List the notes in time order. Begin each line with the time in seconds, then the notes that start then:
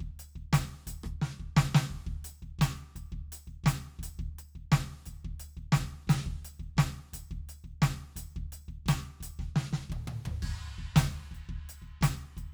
0.01 kick
0.20 percussion
0.36 kick
0.53 kick, snare, percussion
0.80 snare
0.87 kick, percussion
1.04 kick, cross-stick
1.22 snare
1.40 kick
1.57 kick, snare
1.75 snare
1.91 kick
2.07 kick
2.25 percussion
2.43 kick
2.59 kick, snare, percussion
2.96 kick, percussion
3.13 kick
3.33 percussion
3.48 kick
3.64 kick, snare, percussion
3.99 kick
4.04 percussion
4.20 kick
4.39 percussion
4.56 kick
4.72 kick, snare, percussion
5.06 kick, percussion
5.25 kick
5.40 percussion
5.57 kick
5.73 kick, snare, percussion
6.08 kick, snare, percussion
6.27 kick
6.45 percussion
6.60 kick
6.78 kick, snare, percussion
7.14 kick, percussion
7.32 kick
7.49 percussion
7.65 kick
7.82 kick, snare, percussion
8.17 kick, percussion
8.37 kick
8.53 percussion
8.69 kick
8.87 kick, snare, percussion
9.21 kick, percussion
9.40 kick, snare
9.56 snare
9.72 kick, snare
9.90 kick, high tom
10.08 high tom
10.26 kick, floor tom
10.43 kick, crash
10.79 kick
10.97 kick, snare, percussion
11.32 kick, percussion
11.47 kick, snare
11.70 percussion
11.82 kick
12.02 kick, snare, percussion
12.37 kick, percussion